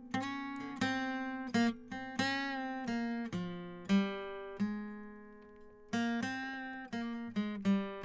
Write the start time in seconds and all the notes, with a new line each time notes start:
0.15 C#4
0.83 C4
1.56 A#3
1.93 C4
2.21 C#4
2.51 C4
2.90 A#3
3.34 F3
3.91 G3
4.61 G#3
5.94 A#3
6.25 C4
6.94 A#3
7.38 G#3
7.66 G3